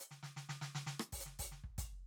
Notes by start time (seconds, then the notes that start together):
0.00 hi-hat pedal
0.11 snare
0.23 snare
0.37 snare
0.49 snare
0.62 snare
0.75 snare
0.87 snare
1.00 cross-stick
1.12 open hi-hat, kick
1.20 hi-hat pedal
1.26 snare
1.39 open hi-hat, kick
1.44 hi-hat pedal
1.52 snare
1.64 kick
1.78 open hi-hat, kick